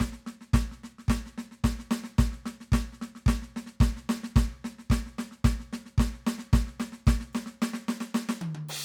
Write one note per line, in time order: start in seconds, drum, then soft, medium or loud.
0.00 kick medium
0.00 snare loud
0.12 snare soft
0.26 snare medium
0.41 snare soft
0.53 kick loud
0.53 snare loud
0.71 snare soft
0.83 snare medium
0.98 snare soft
1.08 kick loud
1.08 snare loud
1.26 snare soft
1.38 snare medium
1.51 snare soft
1.64 kick loud
1.64 snare loud
1.79 snare soft
1.91 snare loud
2.04 snare medium
2.18 kick loud
2.18 snare loud
2.32 snare soft
2.46 snare medium
2.60 snare soft
2.72 kick loud
2.72 snare loud
2.92 snare soft
3.01 snare medium
3.15 snare soft
3.26 kick loud
3.26 snare loud
3.42 snare soft
3.56 snare medium
3.66 snare soft
3.80 kick loud
3.80 snare loud
3.96 snare soft
4.09 snare loud
4.23 snare medium
4.36 kick loud
4.36 snare loud
4.53 cross-stick soft
4.64 snare medium
4.78 snare soft
4.90 kick loud
4.90 snare loud
5.06 snare soft
5.18 snare medium
5.31 snare soft
5.44 kick loud
5.44 snare loud
5.59 snare soft
5.73 snare medium
5.85 snare soft
5.98 kick loud
5.98 snare loud
6.13 snare soft
6.26 snare loud
6.38 snare medium
6.53 kick loud
6.53 snare loud
6.67 snare soft
6.80 snare loud
6.92 snare soft
7.06 kick loud
7.06 snare loud
7.06 closed hi-hat soft
7.20 snare soft
7.33 snare loud
7.33 closed hi-hat soft
7.46 snare medium
7.62 snare loud
7.73 snare medium
7.88 snare loud
8.00 snare medium
8.14 snare loud
8.29 snare loud
8.41 high tom loud
8.55 high tom loud
8.69 crash loud